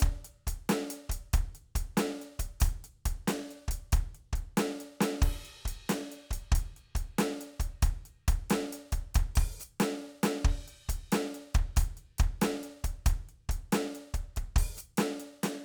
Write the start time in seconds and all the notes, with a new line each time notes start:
0.01 kick, closed hi-hat
0.25 closed hi-hat
0.48 kick, closed hi-hat
0.70 snare, closed hi-hat
0.91 closed hi-hat
1.10 kick, closed hi-hat
1.34 kick, closed hi-hat
1.56 closed hi-hat
1.76 kick, closed hi-hat
1.98 snare, closed hi-hat
2.22 closed hi-hat
2.40 kick, closed hi-hat
2.61 closed hi-hat, kick
2.85 closed hi-hat
3.06 kick, closed hi-hat
3.28 snare, closed hi-hat
3.51 closed hi-hat
3.69 kick, closed hi-hat
3.93 kick, closed hi-hat
4.15 closed hi-hat
4.34 kick, closed hi-hat
4.58 snare, closed hi-hat
4.81 closed hi-hat
5.01 snare, closed hi-hat
5.23 kick, crash
5.46 closed hi-hat
5.66 kick, closed hi-hat
5.90 snare, closed hi-hat
6.13 closed hi-hat
6.32 kick, closed hi-hat
6.53 kick, closed hi-hat
6.77 closed hi-hat
6.96 kick, closed hi-hat
7.19 snare, closed hi-hat
7.42 closed hi-hat
7.60 kick, closed hi-hat
7.83 kick, closed hi-hat
8.06 closed hi-hat
8.29 kick, closed hi-hat
8.51 snare, closed hi-hat
8.73 closed hi-hat
8.93 kick, closed hi-hat
9.15 kick, closed hi-hat
9.36 kick, open hi-hat
9.61 hi-hat pedal
9.81 snare, closed hi-hat
10.24 snare, closed hi-hat
10.45 kick, crash
10.69 closed hi-hat
10.90 kick, closed hi-hat
11.13 snare, closed hi-hat
11.35 closed hi-hat
11.55 kick, closed hi-hat
11.77 closed hi-hat, kick
11.98 closed hi-hat
12.19 kick, closed hi-hat
12.42 snare, closed hi-hat
12.64 closed hi-hat
12.85 kick, closed hi-hat
13.06 kick, closed hi-hat, hi-hat pedal
13.30 closed hi-hat
13.50 kick, closed hi-hat
13.73 snare, closed hi-hat
13.96 closed hi-hat
14.15 kick, closed hi-hat
14.37 kick, closed hi-hat
14.57 kick, open hi-hat
14.78 hi-hat pedal
14.98 snare, closed hi-hat
15.21 closed hi-hat
15.44 snare, closed hi-hat